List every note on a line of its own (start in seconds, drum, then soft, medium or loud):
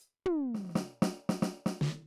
0.00 hi-hat pedal medium
0.25 floor tom loud
0.55 snare soft
0.61 snare soft
0.65 snare soft
0.69 snare soft
0.75 snare medium
1.02 snare medium
1.29 snare medium
1.42 snare medium
1.66 snare medium
1.81 snare medium